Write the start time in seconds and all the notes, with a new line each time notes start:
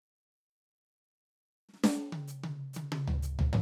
1.69 snare
1.74 snare
1.77 snare
1.83 snare, hi-hat pedal
2.12 high tom
2.28 hi-hat pedal
2.44 open hi-hat, high tom
2.73 hi-hat pedal, high tom
2.92 high tom
3.07 floor tom
3.22 hi-hat pedal
3.39 floor tom
3.53 floor tom